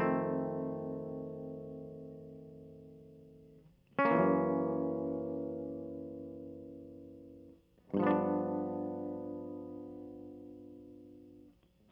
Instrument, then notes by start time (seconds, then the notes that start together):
electric guitar
0.00 F2 A2 D#3 A3 C4
4.00 C#4
4.06 A#3
4.12 E3
4.18 F#2 A#2
7.96 G2 B2
8.01 F3 B3
8.07 D4
8.12 F#4